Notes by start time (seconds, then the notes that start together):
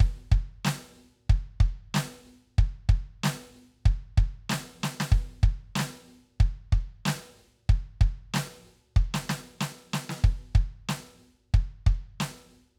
0.01 kick
0.32 kick
0.65 snare
0.68 snare
1.30 kick
1.61 kick
1.95 snare
1.97 snare
2.59 kick
2.90 kick
3.24 snare
3.26 snare
3.86 kick
4.18 kick
4.50 snare
4.53 snare
4.84 snare
5.01 snare
5.13 kick
5.44 kick
5.76 snare
5.80 snare
6.41 kick
6.73 kick
7.06 snare
7.09 snare
7.70 kick
8.02 kick
8.35 snare
8.37 snare
8.97 kick
9.15 snare
9.30 snare
9.61 snare
9.94 snare
10.10 snare
10.25 kick
10.56 kick
10.89 snare
11.55 kick
11.87 kick
12.21 snare